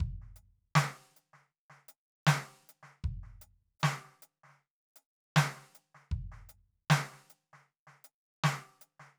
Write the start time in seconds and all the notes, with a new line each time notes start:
0.01 kick
0.22 snare
0.37 closed hi-hat
0.76 snare
1.17 closed hi-hat
1.34 snare
1.71 snare
1.89 closed hi-hat
2.27 snare
2.70 closed hi-hat
2.83 snare
3.05 kick
3.24 snare
3.28 snare
3.42 closed hi-hat
3.80 snare, hi-hat pedal
4.05 snare
4.13 snare
4.23 closed hi-hat
4.44 snare
4.47 snare
4.50 snare
4.97 open hi-hat
5.37 snare, hi-hat pedal
5.57 snare
5.67 snare
5.76 closed hi-hat
5.95 snare
6.01 snare
6.12 kick
6.33 snare
6.50 open hi-hat
6.91 snare, hi-hat pedal
7.13 snare
7.31 closed hi-hat
7.54 snare
7.88 snare
8.05 closed hi-hat
8.44 snare
8.54 snare
8.82 closed hi-hat
9.00 snare